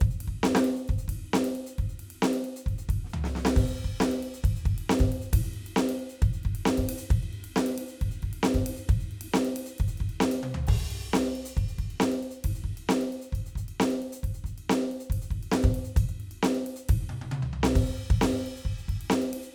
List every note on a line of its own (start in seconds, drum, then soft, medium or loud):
0.01 kick loud
0.01 ride medium
0.11 closed hi-hat soft
0.21 ride medium
0.28 kick medium
0.44 snare loud
0.55 snare loud
0.65 ride medium
0.77 closed hi-hat medium
0.88 kick loud
0.88 ride soft
0.99 closed hi-hat medium
1.08 kick medium
1.08 ride medium
1.26 ride soft
1.34 snare loud
1.45 ride medium
1.55 ride medium
1.67 closed hi-hat medium
1.79 kick medium
1.79 ride soft
1.89 closed hi-hat soft
2.00 ride medium
2.11 ride medium
2.22 snare loud
2.34 ride medium
2.45 ride soft
2.56 closed hi-hat medium
2.66 kick medium
2.66 ride soft
2.79 closed hi-hat medium
2.89 kick loud
2.89 ride medium
3.05 snare soft
3.10 hi-hat pedal soft
3.14 floor tom loud
3.24 snare medium
3.35 snare medium
3.45 snare loud
3.56 kick loud
3.56 crash medium
3.67 closed hi-hat medium
3.79 ride soft
3.85 kick medium
3.91 ride soft
4.00 snare loud
4.12 ride medium
4.23 ride medium
4.34 closed hi-hat medium
4.44 kick loud
4.44 ride medium
4.56 closed hi-hat soft
4.66 kick loud
4.66 ride soft
4.78 ride medium
4.90 snare loud
5.00 kick loud
5.00 ride medium
5.12 ride medium
5.22 closed hi-hat medium
5.33 kick loud
5.33 ride loud
5.44 closed hi-hat medium
5.54 ride soft
5.67 ride medium
5.76 snare loud
5.89 ride medium
6.00 ride soft
6.10 closed hi-hat medium
6.22 kick loud
6.22 ride soft
6.33 closed hi-hat medium
6.44 kick medium
6.44 ride soft
6.55 ride medium
6.66 snare loud
6.78 kick medium
6.78 ride medium
6.89 ride loud
6.98 closed hi-hat loud
7.11 kick loud
7.11 ride medium
7.23 closed hi-hat soft
7.33 ride soft
7.44 ride medium
7.56 snare loud
7.67 ride medium
7.78 ride medium
7.88 closed hi-hat medium
8.01 kick medium
8.01 ride medium
8.11 closed hi-hat medium
8.23 kick medium
8.23 ride soft
8.33 ride medium
8.43 snare loud
8.55 kick loud
8.55 ride medium
8.66 ride loud
8.77 closed hi-hat medium
8.89 kick loud
8.89 ride soft
9.00 closed hi-hat soft
9.11 ride soft
9.21 ride loud
9.31 snare loud
9.31 hi-hat pedal soft
9.45 ride medium
9.56 ride loud
9.66 closed hi-hat medium
9.79 kick loud
9.79 ride medium
9.88 closed hi-hat medium
9.98 kick medium
9.98 ride bell soft
10.10 ride bell soft
10.21 snare loud
10.32 ride bell medium
10.43 high tom loud
10.55 floor tom loud
10.67 kick loud
10.67 crash loud
10.91 ride medium
11.01 ride soft
11.14 snare loud
11.36 ride soft
11.45 closed hi-hat loud
11.57 kick loud
11.57 ride soft
11.69 closed hi-hat medium
11.79 kick medium
11.79 ride soft
11.91 ride bell soft
12.00 snare loud
12.12 ride soft
12.23 ride bell soft
12.31 closed hi-hat medium
12.44 kick loud
12.44 ride loud
12.55 closed hi-hat medium
12.64 kick medium
12.77 ride bell medium
12.89 snare loud
13.01 ride soft
13.13 ride bell soft
13.22 closed hi-hat medium
13.33 kick medium
13.33 ride bell soft
13.46 closed hi-hat medium
13.56 closed hi-hat medium
13.56 kick medium
13.69 ride bell soft
13.80 snare loud
13.91 ride bell soft
14.02 ride soft
14.13 closed hi-hat medium
14.24 kick medium
14.24 ride medium
14.34 closed hi-hat medium
14.44 closed hi-hat medium
14.44 kick medium
14.58 ride bell soft
14.70 snare loud
14.92 ride soft
15.00 closed hi-hat medium
15.10 kick medium
15.10 ride medium
15.22 closed hi-hat medium
15.31 kick medium
15.31 ride soft
15.43 ride bell soft
15.52 snare loud
15.63 kick loud
15.63 ride soft
15.75 ride medium
15.85 closed hi-hat medium
15.97 kick loud
15.97 ride bell medium
16.09 closed hi-hat soft
16.20 ride soft
16.31 ride bell soft
16.43 snare loud
16.55 ride bell soft
16.67 ride medium
16.76 closed hi-hat medium
16.89 kick loud
16.89 ride loud
17.01 snare soft
17.10 high tom medium
17.22 high tom loud
17.32 high tom loud
17.43 floor tom loud
17.53 floor tom medium
17.64 snare loud
17.76 kick loud
17.76 crash medium
17.87 closed hi-hat medium
17.97 closed hi-hat soft
18.10 kick loud
18.21 snare loud
18.21 crash medium
18.46 ride soft
18.57 closed hi-hat medium
18.65 kick medium
18.70 ride soft
18.78 closed hi-hat soft
18.89 kick medium
18.89 ride soft
19.01 ride medium
19.10 snare loud
19.22 ride bell soft
19.33 ride medium
19.43 closed hi-hat medium